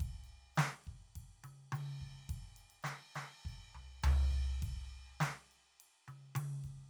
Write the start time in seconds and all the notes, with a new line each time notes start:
0.01 kick, ride
0.25 ride
0.56 snare, hi-hat pedal, ride
0.85 kick, ride
1.16 kick, ride
1.44 high tom, ride
1.73 hi-hat pedal, high tom, ride
2.02 kick
2.30 kick, ride
2.57 ride
2.71 ride
2.84 snare, hi-hat pedal, ride
3.16 snare, ride
3.46 kick, ride
3.75 floor tom
4.03 floor tom, hi-hat pedal, ride
4.31 kick, ride
4.63 kick, ride
4.87 ride
5.21 snare, hi-hat pedal, ride
5.52 ride
5.81 ride
6.09 high tom, ride
6.36 hi-hat pedal, high tom, ride
6.65 kick, ride